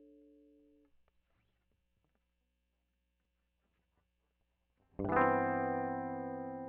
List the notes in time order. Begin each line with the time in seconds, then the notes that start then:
5.01 G2
5.10 E3 B3
5.17 C4